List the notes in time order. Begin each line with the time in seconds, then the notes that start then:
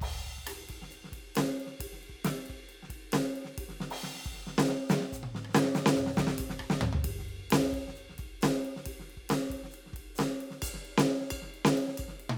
0.01 kick, hi-hat pedal, crash, floor tom
0.15 kick
0.39 kick
0.47 cross-stick, hi-hat pedal, ride
0.69 kick, ride
0.76 kick
0.82 snare
0.91 hi-hat pedal, ride
1.05 snare
1.12 kick, ride
1.18 kick
1.35 snare, hi-hat pedal, ride
1.44 snare
1.60 ride
1.67 snare
1.80 kick, hi-hat pedal, ride
1.86 kick
1.93 snare
2.01 snare, ride
2.10 kick
2.15 kick
2.24 snare, hi-hat pedal, ride
2.46 kick, ride
2.57 snare
2.69 hi-hat pedal, ride
2.83 snare
2.90 kick, ride
2.96 kick
3.12 snare, hi-hat pedal, ride
3.36 ride
3.45 snare
3.58 kick, hi-hat pedal, ride
3.65 kick
3.69 snare
3.81 snare
3.91 crash
3.98 hi-hat pedal
4.04 snare
4.15 snare
4.25 kick, hi-hat pedal, ride bell
4.33 kick, snare
4.37 kick, snare
4.47 snare
4.58 snare
4.66 snare, hi-hat pedal
4.90 snare, hi-hat pedal
5.01 snare
5.13 kick, hi-hat pedal, high tom
5.23 closed hi-hat, high tom
5.35 snare
5.45 cross-stick
5.50 snare
5.54 snare, hi-hat pedal
5.64 snare
5.75 snare, hi-hat pedal
5.86 snare
5.95 kick, hi-hat pedal, mid tom
6.07 snare
6.14 snare, hi-hat pedal
6.18 kick
6.24 kick, snare
6.38 kick, hi-hat pedal, ride
6.47 kick
6.49 kick, snare
6.60 kick, cross-stick
6.70 snare
6.81 hi-hat pedal, floor tom
6.93 floor tom
7.05 kick, ride
7.18 kick, snare
7.29 ride
7.40 kick
7.51 snare, hi-hat pedal, ride
7.73 kick, ride
7.79 kick
7.83 kick
7.88 snare
7.95 hi-hat pedal, ride
8.10 snare
8.18 kick, ride
8.26 kick
8.41 snare, hi-hat pedal, ride
8.65 ride
8.77 snare
8.86 kick, hi-hat pedal, ride
8.93 kick
9.00 snare
9.10 ride
9.17 kick
9.30 snare, hi-hat pedal, ride
9.50 kick, ride
9.56 kick
9.64 snare
9.71 hi-hat pedal, ride
9.86 snare
9.93 kick, ride
10.00 kick
10.16 snare, hi-hat pedal, ride
10.41 ride
10.51 snare
10.62 kick, hi-hat pedal, ride bell
10.70 kick, snare
10.74 kick
10.85 ride
10.98 snare
11.20 snare
11.31 kick, ride bell
11.39 kick, snare
11.54 ride
11.65 snare
11.78 ride
11.87 snare
11.98 kick, ride bell
12.07 kick, snare
12.20 ride
12.30 high tom